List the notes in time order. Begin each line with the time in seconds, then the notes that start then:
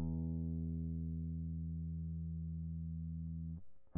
0.00 E2